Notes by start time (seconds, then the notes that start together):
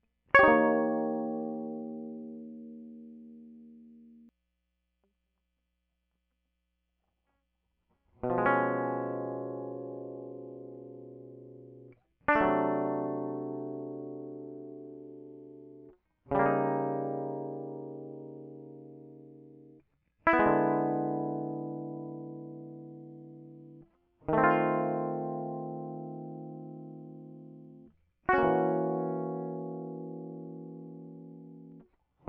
0.35 C#5
0.39 G4
0.43 D#4
0.48 A#3
8.24 B2
8.30 F3
8.38 G#3
8.46 C#4
12.28 D4
12.36 A3
12.41 F#3
12.46 C3
16.32 C#3 G3
16.39 A#3
16.46 D#4
20.27 E4
20.33 B3
20.39 G#3
20.47 D3
24.29 D#3 A3
24.38 C4
24.44 F4
28.29 F#4
28.33 C#4
28.39 A#3
28.44 E3